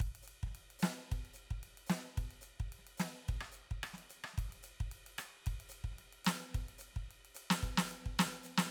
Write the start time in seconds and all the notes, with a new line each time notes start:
0.01 kick, ride
0.07 kick
0.12 kick, ride
0.22 hi-hat pedal
0.28 ride
0.43 kick, snare
0.50 snare
0.54 snare, ride
0.58 snare
0.70 ride
0.79 snare, hi-hat pedal, ride
1.11 kick, snare, ride
1.25 ride
1.33 hi-hat pedal, ride
1.50 kick, snare
1.56 snare
1.60 snare
1.62 snare, ride
1.64 snare
1.66 snare
1.77 ride
1.86 snare, hi-hat pedal, ride
2.17 kick, ride
2.25 kick
2.31 ride
2.41 hi-hat pedal, ride
2.60 kick
2.72 kick, ride
2.78 snare
2.87 ride
2.97 snare, hi-hat pedal, ride
3.28 kick, ride
3.36 kick
3.41 cross-stick
3.52 hi-hat pedal, ride
3.71 kick
3.83 cross-stick, ride
3.93 snare
3.98 ride
4.09 hi-hat pedal, ride
4.24 cross-stick
4.33 snare
4.38 kick, ride
4.48 snare, ride
4.55 snare
4.63 hi-hat pedal, ride
4.80 kick
4.91 ride
5.06 ride
5.18 cross-stick, hi-hat pedal, ride
5.46 kick, ride
5.54 kick
5.60 ride
5.69 hi-hat pedal, ride
5.84 kick
5.91 snare
5.95 snare
5.98 snare, ride
6.13 ride
6.25 snare, hi-hat pedal, ride
6.54 kick, snare, ride
6.69 ride
6.78 hi-hat pedal, ride
6.93 kick, snare
6.97 snare
7.00 snare
7.11 ride
7.25 ride
7.34 hi-hat pedal, ride
7.50 snare
7.63 kick, ride
7.77 snare
7.87 hi-hat pedal
7.91 ride
8.06 kick
8.19 snare, ride
8.26 snare
8.34 ride
8.43 hi-hat pedal, ride
8.58 snare
8.66 snare